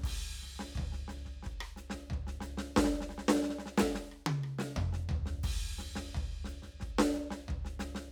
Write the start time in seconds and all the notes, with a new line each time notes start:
0.01 kick, snare
0.06 snare, crash
0.12 snare
0.39 snare, hi-hat pedal
0.56 kick, snare
0.76 kick, floor tom
0.93 snare
1.09 snare, hi-hat pedal
1.26 kick, snare
1.43 kick, snare
1.61 cross-stick
1.77 snare, hi-hat pedal
1.91 kick, snare
2.11 kick, floor tom
2.28 snare
2.41 snare, hi-hat pedal
2.58 snare
2.77 kick, snare
2.85 kick, snare
2.94 snare
3.01 snare
3.10 snare
3.19 snare
3.29 snare
3.36 snare
3.43 snare
3.50 snare
3.59 snare
3.66 snare
3.78 snare
3.83 kick
3.88 kick
3.95 snare
4.12 cross-stick
4.27 high tom
4.44 cross-stick
4.59 snare
4.77 kick, mid tom
4.93 snare
5.10 kick, floor tom
5.26 snare
5.44 kick, snare, crash
5.79 snare, hi-hat pedal
5.96 kick, snare
6.15 kick, floor tom
6.45 snare, hi-hat pedal
6.63 kick, snare
6.81 kick, snare
6.99 snare
7.13 snare, hi-hat pedal
7.31 kick, snare
7.49 kick, floor tom
7.65 snare
7.80 snare, hi-hat pedal
7.96 snare